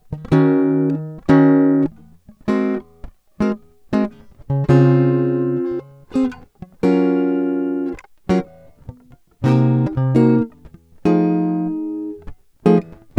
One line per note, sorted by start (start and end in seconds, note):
0.33 1.22 D#3
0.33 1.02 C#4
0.33 0.93 F#4
0.33 0.97 A#4
1.30 1.93 D#3
1.30 1.93 C#4
1.30 1.94 F#4
1.30 1.90 A#4
2.50 2.85 G#3
2.50 2.82 C4
2.50 2.85 F#4
2.50 2.84 A#4
3.42 3.61 G#3
3.42 3.58 C4
3.42 3.58 F#4
3.42 3.60 A#4
3.95 4.12 G#3
3.95 4.09 C4
3.95 4.12 F#4
3.95 4.11 A#4
4.52 4.71 C#3
4.70 5.65 C#3
4.70 5.85 C4
4.70 5.85 F4
4.70 5.48 G#4
6.14 6.34 C4
6.14 6.32 F4
6.14 6.32 G#4
6.85 8.01 F#3
6.85 7.99 C#4
6.85 7.97 F4
6.85 7.99 A#4
8.31 8.45 F#3
8.31 8.46 C#4
8.31 8.46 F4
8.31 8.48 A#4
9.46 9.90 C3
9.46 9.90 A#3
9.46 9.99 D#4
9.46 9.94 F#4
9.99 10.47 C3
10.17 10.52 A#3
10.17 10.50 D#4
10.17 10.44 F#4
11.07 11.74 F3
11.07 12.17 A3
11.07 12.27 D#4
11.07 12.32 G#4
12.68 12.84 F3
12.68 12.85 A3
12.68 12.85 D#4
12.68 12.85 G#4